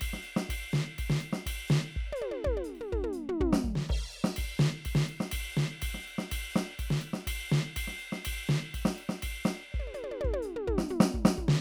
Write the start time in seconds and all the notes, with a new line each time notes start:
0.01 kick, ride bell
0.08 kick
0.13 snare
0.22 hi-hat pedal, ride
0.37 snare
0.45 hi-hat pedal
0.49 kick, ride bell
0.55 kick
0.71 snare, hi-hat pedal
0.98 kick, ride bell
1.05 kick
1.10 snare
1.18 hi-hat pedal, ride
1.33 snare
1.46 kick, ride bell
1.52 kick
1.68 snare, hi-hat pedal
1.90 hi-hat pedal
1.96 kick
2.02 kick
2.07 high tom
2.12 hi-hat pedal, high tom
2.21 high tom
2.31 high tom
2.44 kick, high tom
2.53 kick, high tom
2.64 hi-hat pedal
2.69 mid tom
2.75 ride
2.81 mid tom
2.92 kick, mid tom
2.99 kick
3.04 mid tom
3.13 hi-hat pedal
3.28 floor tom
3.40 kick, floor tom
3.47 kick
3.53 snare
3.63 kick, hi-hat pedal
3.76 snare
3.89 kick, crash
4.02 kick
4.11 hi-hat pedal
4.24 snare
4.36 kick, ride bell
4.44 kick
4.58 snare, hi-hat pedal
4.85 kick, ride bell
4.95 snare
5.05 hi-hat pedal, ride
5.20 snare
5.32 kick, ride bell
5.39 kick
5.52 hi-hat pedal
5.57 snare
5.82 kick, ride bell
5.89 kick
5.95 snare
6.02 hi-hat pedal
6.07 ride
6.19 snare
6.32 kick, ride bell
6.51 hi-hat pedal
6.56 snare
6.79 kick, ride bell
6.85 kick
6.91 snare
6.99 hi-hat pedal, ride
7.14 snare
7.22 hi-hat pedal
7.27 kick, ride bell
7.33 kick
7.49 snare, hi-hat pedal
7.71 hi-hat pedal
7.76 kick, ride bell
7.82 kick
7.88 snare
7.98 hi-hat pedal, ride
8.13 snare
8.25 kick, ride bell
8.32 kick
8.46 snare, hi-hat pedal
8.74 kick, ride bell
8.80 kick
8.85 snare
8.94 hi-hat pedal
8.98 ride
9.09 snare
9.22 kick, ride bell
9.29 kick
9.44 snare, hi-hat pedal
9.72 kick, high tom
9.79 kick, high tom
9.87 high tom
9.94 hi-hat pedal, high tom
10.04 high tom
10.11 high tom
10.21 kick, high tom
10.31 kick, high tom
10.42 hi-hat pedal, mid tom
10.56 mid tom
10.67 kick, mid tom
10.75 kick, snare
10.89 floor tom, hi-hat pedal
11.00 snare
11.14 kick, floor tom
11.25 snare
11.37 kick, floor tom, hi-hat pedal
11.48 snare